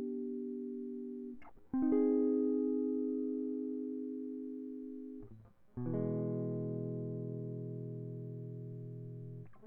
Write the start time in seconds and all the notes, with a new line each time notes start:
1.74 C4
1.82 D#4
1.92 G#4
5.78 B2
5.86 E3
5.94 G#3